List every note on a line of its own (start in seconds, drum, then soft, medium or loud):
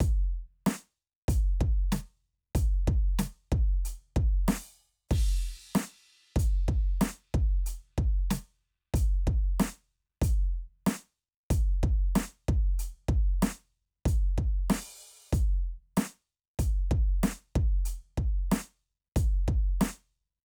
0.01 closed hi-hat loud
0.01 kick loud
0.67 closed hi-hat loud
0.67 snare loud
1.29 closed hi-hat loud
1.29 kick loud
1.61 kick loud
1.92 closed hi-hat loud
1.92 snare loud
2.56 closed hi-hat loud
2.56 kick loud
2.88 kick loud
3.19 closed hi-hat loud
3.19 snare loud
3.52 kick loud
3.86 closed hi-hat loud
4.17 kick loud
4.49 open hi-hat loud
4.49 snare loud
5.09 kick loud
5.09 hi-hat pedal soft
5.09 crash loud
5.76 closed hi-hat loud
5.76 snare loud
6.37 closed hi-hat loud
6.37 kick loud
6.69 kick loud
7.02 closed hi-hat loud
7.02 snare loud
7.35 kick loud
7.67 closed hi-hat loud
7.98 kick loud
8.31 closed hi-hat loud
8.31 snare loud
8.94 closed hi-hat loud
8.94 kick loud
9.28 kick loud
9.60 closed hi-hat loud
9.60 snare loud
10.22 closed hi-hat loud
10.22 kick loud
10.87 closed hi-hat loud
10.87 snare loud
11.51 closed hi-hat loud
11.51 kick loud
11.84 kick loud
12.16 closed hi-hat loud
12.16 snare loud
12.49 kick loud
12.80 closed hi-hat loud
13.09 kick loud
13.43 closed hi-hat loud
13.43 snare loud
14.06 closed hi-hat loud
14.06 kick loud
14.38 kick loud
14.70 open hi-hat loud
14.70 snare loud
15.30 kick loud
15.30 hi-hat pedal soft
15.34 closed hi-hat loud
15.97 closed hi-hat loud
15.97 snare loud
16.60 closed hi-hat loud
16.60 kick loud
16.92 kick loud
17.24 closed hi-hat loud
17.24 snare loud
17.56 kick loud
17.86 closed hi-hat loud
18.18 kick loud
18.52 closed hi-hat loud
18.52 snare loud
19.17 closed hi-hat loud
19.17 kick loud
19.49 kick loud
19.82 closed hi-hat loud
19.82 snare loud